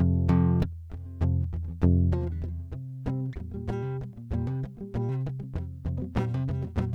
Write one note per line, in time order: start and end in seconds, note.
0.00 0.30 F2
0.00 0.30 C3
0.00 0.29 F3
0.30 0.65 F2
0.30 0.72 C3
0.30 0.64 F3
0.93 1.80 F2
0.93 1.04 C3
1.06 1.22 C3
1.23 1.52 C3
1.23 1.51 F3
1.83 2.81 E2
1.83 2.32 C3
2.14 2.32 F3
2.43 2.51 B2
2.74 3.06 C3
3.08 3.33 C3
3.08 3.22 G3
3.08 3.25 C4
3.34 3.45 A2
3.42 3.53 F#3
3.54 3.69 A#2
3.54 3.62 G3
3.69 3.84 A#2
3.69 4.03 G3
3.84 4.01 C3
4.03 4.14 B2
4.03 4.17 G3
4.19 4.33 A#2
4.34 4.49 A#2
4.34 4.65 G3
4.49 4.65 C3
4.65 4.72 C3
4.80 4.88 G3
4.95 5.05 A#2
4.95 5.21 G3
5.05 5.12 B2
5.13 5.25 C3
5.28 5.42 C3
5.43 5.55 C3
5.58 5.85 C3
5.88 6.04 C3
6.04 6.11 A#2
6.17 6.35 A#2
6.36 6.49 C3
6.50 6.69 C3
6.78 6.95 A#2